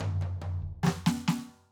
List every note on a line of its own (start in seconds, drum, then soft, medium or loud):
0.01 floor tom loud
0.01 high tom loud
0.22 floor tom medium
0.22 high tom medium
0.42 floor tom medium
0.42 high tom medium
0.63 kick soft
0.84 snare loud
0.87 snare loud
1.07 snare loud
1.28 snare loud